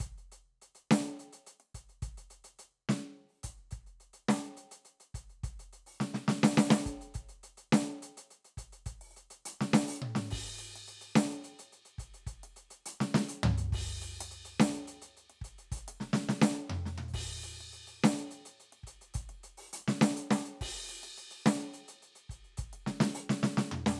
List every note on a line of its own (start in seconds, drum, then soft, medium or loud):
0.02 closed hi-hat medium
0.02 kick soft
0.07 kick soft
0.11 kick soft
0.18 closed hi-hat soft
0.32 closed hi-hat medium
0.62 closed hi-hat medium
0.75 closed hi-hat soft
0.91 snare loud
1.06 closed hi-hat soft
1.19 closed hi-hat medium
1.33 closed hi-hat medium
1.47 closed hi-hat medium
1.60 closed hi-hat soft
1.74 closed hi-hat medium
1.74 kick soft
1.89 closed hi-hat soft
2.02 closed hi-hat medium
2.02 kick soft
2.08 kick soft
2.17 closed hi-hat medium
2.30 closed hi-hat medium
2.44 closed hi-hat medium
2.59 closed hi-hat medium
2.89 snare loud
3.29 open hi-hat soft
3.43 closed hi-hat loud
3.43 kick soft
3.49 kick soft
3.57 closed hi-hat soft
3.71 closed hi-hat medium
3.71 kick soft
3.86 closed hi-hat soft
4.00 closed hi-hat soft
4.13 closed hi-hat medium
4.28 snare loud
4.44 closed hi-hat soft
4.57 closed hi-hat medium
4.71 closed hi-hat medium
4.85 closed hi-hat soft
5.00 closed hi-hat soft
5.14 closed hi-hat medium
5.14 kick soft
5.29 closed hi-hat soft
5.43 closed hi-hat medium
5.43 kick soft
5.52 kick soft
5.59 closed hi-hat medium
5.73 closed hi-hat soft
5.86 open hi-hat medium
6.00 snare medium
6.14 snare medium
6.28 snare loud
6.43 snare loud
6.57 snare loud
6.70 snare loud
6.78 hi-hat pedal soft
6.86 closed hi-hat medium
6.86 kick soft
7.01 closed hi-hat soft
7.14 closed hi-hat medium
7.14 kick soft
7.29 closed hi-hat soft
7.43 closed hi-hat medium
7.57 closed hi-hat medium
7.72 snare loud
8.02 closed hi-hat medium
8.17 closed hi-hat medium
8.30 closed hi-hat medium
8.45 closed hi-hat soft
8.57 closed hi-hat medium
8.57 kick soft
8.72 closed hi-hat soft
8.72 closed hi-hat medium
8.86 closed hi-hat medium
8.86 kick soft
8.91 kick soft
9.01 open hi-hat soft
9.11 open hi-hat soft
9.16 closed hi-hat medium
9.30 closed hi-hat medium
9.45 closed hi-hat loud
9.61 snare medium
9.73 snare loud
9.88 open hi-hat loud
10.02 high tom medium
10.15 snare medium
10.26 hi-hat pedal soft
10.31 kick soft
10.31 crash loud
10.46 closed hi-hat medium
10.58 closed hi-hat medium
10.76 closed hi-hat medium
10.88 closed hi-hat medium
11.01 closed hi-hat medium
11.15 snare loud
11.31 closed hi-hat medium
11.44 closed hi-hat medium
11.59 closed hi-hat medium
11.72 closed hi-hat soft
11.85 closed hi-hat medium
11.98 closed hi-hat medium
11.98 kick soft
12.14 closed hi-hat medium
12.27 closed hi-hat medium
12.27 kick soft
12.43 closed hi-hat medium
12.56 closed hi-hat medium
12.70 closed hi-hat medium
12.86 closed hi-hat loud
13.00 snare medium
13.14 snare loud
13.29 closed hi-hat loud
13.43 floor tom loud
13.58 closed hi-hat medium
13.72 kick soft
13.72 crash medium
13.78 kick soft
13.87 closed hi-hat soft
14.02 closed hi-hat medium
14.21 closed hi-hat loud
14.31 closed hi-hat medium
14.45 closed hi-hat medium
14.60 snare loud
14.74 closed hi-hat medium
14.87 closed hi-hat medium
15.02 closed hi-hat medium
15.17 closed hi-hat soft
15.30 closed hi-hat soft
15.41 closed hi-hat medium
15.41 kick soft
15.58 closed hi-hat soft
15.58 closed hi-hat medium
15.72 closed hi-hat medium
15.72 kick soft
15.76 closed hi-hat medium
15.88 closed hi-hat medium
16.00 snare medium
16.13 snare loud
16.29 snare medium
16.42 snare loud
16.55 cross-stick medium
16.70 mid tom loud
16.85 snare soft
16.98 mid tom medium
17.08 hi-hat pedal soft
17.14 kick soft
17.14 crash loud
17.23 kick soft
17.43 closed hi-hat medium
17.60 closed hi-hat soft
17.73 closed hi-hat medium
17.87 closed hi-hat medium
18.04 snare loud
18.18 closed hi-hat medium
18.31 closed hi-hat medium
18.45 closed hi-hat medium
18.60 closed hi-hat soft
18.72 closed hi-hat soft
18.83 closed hi-hat medium
18.83 kick soft
19.01 closed hi-hat soft
19.14 closed hi-hat medium
19.14 kick soft
19.21 kick soft
19.29 closed hi-hat soft
19.43 closed hi-hat medium
19.57 open hi-hat medium
19.67 hi-hat pedal soft
19.73 closed hi-hat loud
19.88 snare loud
20.01 snare loud
20.16 closed hi-hat loud
20.31 snare loud
20.45 closed hi-hat medium
20.61 kick soft
20.61 crash loud
20.77 closed hi-hat soft
20.89 closed hi-hat medium
21.03 closed hi-hat medium
21.17 closed hi-hat medium
21.31 closed hi-hat medium
21.46 snare loud
21.60 closed hi-hat medium
21.74 closed hi-hat medium
21.88 closed hi-hat medium
22.02 closed hi-hat soft
22.15 closed hi-hat medium
22.29 closed hi-hat medium
22.29 kick soft
22.44 closed hi-hat soft
22.57 closed hi-hat medium
22.57 kick soft
22.64 kick soft
22.73 closed hi-hat medium
22.86 snare medium
23.00 snare loud
23.14 open hi-hat loud
23.14 hi-hat pedal soft
23.29 snare loud
23.43 snare loud
23.43 hi-hat pedal soft
23.57 snare loud
23.71 mid tom medium
23.86 snare loud